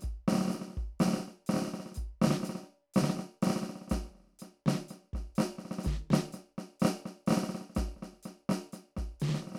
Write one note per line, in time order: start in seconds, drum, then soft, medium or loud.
0.01 kick soft
0.01 snare soft
0.01 hi-hat pedal medium
0.28 snare medium
0.33 snare medium
0.35 snare medium
0.38 snare medium
0.41 snare medium
0.45 snare soft
0.48 snare soft
0.50 snare soft
0.50 hi-hat pedal medium
0.55 snare soft
0.60 snare soft
0.62 snare soft
0.68 snare soft
0.70 snare soft
0.73 kick soft
0.73 snare soft
0.78 snare soft
1.00 snare medium
1.00 hi-hat pedal medium
1.06 snare medium
1.08 snare medium
1.11 snare soft
1.14 snare medium
1.16 snare soft
1.20 snare soft
1.28 snare soft
1.46 snare medium
1.46 hi-hat pedal medium
1.54 snare medium
1.56 snare medium
1.59 snare soft
1.62 snare medium
1.65 snare soft
1.68 snare soft
1.74 snare soft
1.79 snare soft
1.86 snare soft
1.92 snare soft
1.92 hi-hat pedal medium
1.96 kick soft
1.96 snare soft
2.22 snare medium
2.24 snare medium
2.27 snare medium
2.31 snare medium
2.36 snare soft
2.40 snare soft
2.43 snare soft
2.43 hi-hat pedal medium
2.49 snare soft
2.55 snare soft
2.59 snare soft
2.63 snare soft
2.94 snare medium
2.94 hi-hat pedal medium
2.98 snare medium
3.01 snare medium
3.04 snare medium
3.10 snare medium
3.17 snare soft
3.19 snare soft
3.42 snare medium
3.42 hi-hat pedal medium
3.47 snare medium
3.50 snare medium
3.56 snare medium
3.62 snare soft
3.69 snare soft
3.76 snare soft
3.82 snare soft
3.88 snare soft
3.88 hi-hat pedal medium
3.91 kick soft
3.91 snare medium
4.05 snare soft
4.11 snare soft
4.15 snare soft
4.20 snare soft
4.24 snare soft
4.27 snare soft
4.33 snare soft
4.39 snare soft
4.39 hi-hat pedal medium
4.66 snare medium
4.68 snare medium
4.75 snare soft
4.89 snare soft
4.89 hi-hat pedal medium
4.98 snare soft
5.04 snare soft
5.13 kick soft
5.13 snare soft
5.35 snare medium
5.35 hi-hat pedal medium
5.40 snare medium
5.59 snare soft
5.65 snare soft
5.71 snare soft
5.79 snare soft
5.83 snare soft
5.83 hi-hat pedal medium
5.86 kick soft
5.86 snare medium
5.92 kick soft
6.10 snare medium
6.13 snare loud
6.30 snare soft
6.30 hi-hat pedal medium
6.34 snare soft
6.58 snare soft
6.80 snare medium
6.80 hi-hat pedal medium
6.85 snare loud
7.06 snare soft
7.27 snare medium
7.27 hi-hat pedal medium
7.31 snare medium
7.32 snare medium
7.37 snare medium
7.43 snare medium
7.49 snare soft
7.55 snare soft
7.61 snare soft
7.70 snare soft
7.75 kick soft
7.75 snare medium
7.75 hi-hat pedal medium
7.88 snare soft
7.96 snare soft
8.03 snare soft
8.13 snare soft
8.17 snare soft
8.23 snare soft
8.23 hi-hat pedal medium
8.49 snare medium
8.51 snare medium
8.73 snare soft
8.73 hi-hat pedal medium
8.84 snare soft
8.97 kick soft
8.97 snare soft
9.20 snare medium
9.20 hi-hat pedal medium
9.29 snare medium
9.35 snare soft
9.42 snare soft
9.47 snare soft
9.52 snare soft
9.55 snare soft